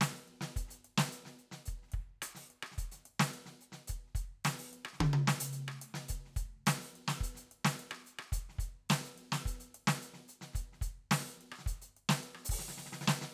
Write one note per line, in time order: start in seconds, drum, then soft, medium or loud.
0.01 closed hi-hat medium
0.01 snare loud
0.13 open hi-hat soft
0.13 snare soft
0.28 closed hi-hat soft
0.41 snare medium
0.53 closed hi-hat medium
0.53 kick soft
0.53 snare soft
0.62 kick soft
0.68 closed hi-hat medium
0.68 snare soft
0.73 snare soft
0.85 closed hi-hat soft
0.98 snare loud
1.07 snare soft
1.12 closed hi-hat medium
1.25 snare soft
1.39 open hi-hat soft
1.39 hi-hat pedal soft
1.52 snare medium
1.66 closed hi-hat medium
1.66 kick soft
1.83 snare soft
1.88 snare soft
1.88 closed hi-hat soft
1.94 kick soft
2.00 kick soft
2.02 kick soft
2.22 closed hi-hat medium
2.22 cross-stick medium
2.35 open hi-hat medium
2.35 snare soft
2.46 hi-hat pedal soft
2.50 closed hi-hat soft
2.63 cross-stick medium
2.72 snare soft
2.78 closed hi-hat medium
2.78 kick soft
2.83 kick soft
2.92 closed hi-hat medium
2.92 snare soft
2.97 snare soft
3.00 snare soft
3.06 closed hi-hat soft
3.20 snare loud
3.34 closed hi-hat soft
3.46 snare soft
3.61 open hi-hat soft
3.61 hi-hat pedal soft
3.72 snare soft
3.88 closed hi-hat medium
3.88 kick soft
4.07 snare soft
4.11 kick soft
4.11 snare soft
4.16 closed hi-hat medium
4.21 kick soft
4.24 kick soft
4.44 closed hi-hat medium
4.44 snare loud
4.56 open hi-hat medium
4.56 snare soft
4.69 hi-hat pedal soft
4.73 closed hi-hat soft
4.85 cross-stick medium
4.93 snare soft
5.00 kick soft
5.00 snare soft
5.00 high tom loud
5.06 kick soft
5.13 high tom medium
5.28 snare loud
5.36 snare soft
5.40 open hi-hat loud
5.47 snare soft
5.53 closed hi-hat medium
5.68 cross-stick medium
5.82 closed hi-hat medium
5.94 snare medium
6.09 closed hi-hat medium
6.09 kick soft
6.26 snare soft
6.31 snare soft
6.31 hi-hat pedal soft
6.36 closed hi-hat medium
6.36 kick soft
6.42 kick soft
6.45 kick soft
6.66 closed hi-hat loud
6.66 snare loud
6.78 open hi-hat medium
6.78 snare soft
6.90 hi-hat pedal soft
6.95 closed hi-hat soft
7.08 snare loud
7.18 kick soft
7.18 snare soft
7.24 closed hi-hat medium
7.24 kick soft
7.35 closed hi-hat medium
7.35 snare soft
7.40 snare soft
7.46 snare soft
7.51 closed hi-hat soft
7.65 snare loud
7.80 closed hi-hat soft
7.91 cross-stick medium
8.04 closed hi-hat soft
8.04 hi-hat pedal soft
8.19 cross-stick medium
8.32 closed hi-hat medium
8.32 kick soft
8.38 kick soft
8.42 kick soft
8.49 snare soft
8.55 kick soft
8.55 snare soft
8.59 closed hi-hat medium
8.59 snare soft
8.62 snare soft
8.67 kick soft
8.89 closed hi-hat medium
8.89 snare loud
9.01 closed hi-hat soft
9.01 snare soft
9.18 closed hi-hat soft
9.32 snare loud
9.46 closed hi-hat medium
9.46 kick soft
9.54 snare soft
9.58 closed hi-hat medium
9.58 snare soft
9.61 snare soft
9.67 snare soft
9.75 closed hi-hat soft
9.87 snare loud
10.02 closed hi-hat medium
10.14 snare soft
10.28 closed hi-hat soft
10.28 hi-hat pedal soft
10.41 snare medium
10.53 closed hi-hat medium
10.53 kick soft
10.53 snare soft
10.61 kick soft
10.73 snare soft
10.79 closed hi-hat medium
10.79 kick soft
10.79 snare soft
10.87 kick soft
10.90 kick soft
11.11 open hi-hat medium
11.11 snare loud
11.20 snare soft
11.27 open hi-hat soft
11.41 closed hi-hat soft
11.52 cross-stick medium
11.59 snare soft
11.66 closed hi-hat medium
11.66 kick soft
11.72 kick soft
11.72 snare soft
11.80 closed hi-hat soft
11.80 snare soft
11.97 closed hi-hat soft
12.09 snare loud
12.16 hi-hat pedal soft
12.23 closed hi-hat soft
12.35 cross-stick medium
12.45 hi-hat pedal loud
12.49 open hi-hat loud
12.49 kick soft
12.55 kick soft
12.55 snare soft
12.68 snare soft
12.78 snare soft
12.86 snare soft
12.93 snare medium
13.01 snare medium
13.01 hi-hat pedal medium
13.08 snare loud
13.22 snare medium
13.29 hi-hat pedal soft